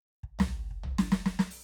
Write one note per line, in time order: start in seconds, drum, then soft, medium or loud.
0.24 kick soft
0.39 snare loud
0.39 floor tom loud
0.71 kick soft
0.84 floor tom loud
0.99 snare loud
1.13 snare loud
1.26 snare loud
1.40 snare loud
1.51 open hi-hat medium